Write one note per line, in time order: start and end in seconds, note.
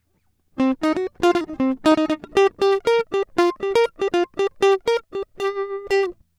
0.61 0.77 C4
0.84 0.95 D#4
0.98 1.12 F#4
1.24 1.41 F4
1.42 1.58 D#4
1.61 1.81 C4
1.86 1.96 D#4
1.99 2.09 D#4
2.10 2.19 D#4
2.38 2.52 G4
2.62 2.82 G4
2.88 3.06 A#4
3.15 3.26 G4
3.39 3.55 F4
3.64 3.79 G4
3.76 3.93 A#4
4.03 4.11 G4
4.14 4.29 F4
4.40 4.50 G4
4.63 4.81 G4
4.88 5.03 A#4
5.16 5.28 G4
5.41 5.52 G4
5.91 6.15 G4